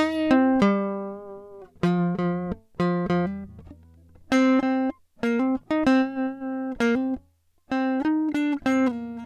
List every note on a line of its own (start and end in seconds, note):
0.00 0.32 D#4
0.31 0.66 C4
0.31 0.61 F4
0.62 1.18 G3
1.84 2.18 F3
2.20 2.55 F3
2.80 3.08 F3
3.11 3.28 F3
3.28 3.48 G3
4.32 4.60 C4
4.60 4.95 C4
5.24 5.40 A#3
5.41 5.61 C4
5.71 5.93 D#4
5.87 6.77 C4
6.81 6.95 A#3
6.96 7.22 C4
7.72 8.04 C4
8.06 8.35 D#4
8.36 8.61 D4
8.67 8.87 C4
8.88 9.26 A#3